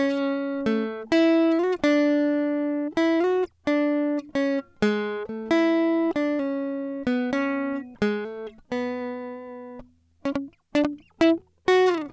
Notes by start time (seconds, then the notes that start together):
0.00 C#4
0.68 A3
1.13 E4
1.60 F#4
1.85 D4
2.98 E4
3.22 F#4
3.69 D4
4.37 C#4
4.84 G#3
5.31 A3
5.52 E4
6.18 D4
6.41 C#4
7.08 B3
7.34 C#4
8.03 G#3
8.27 A3
8.73 B3
10.27 C#4
10.37 C#4
10.76 D4
11.22 E4
11.69 F#4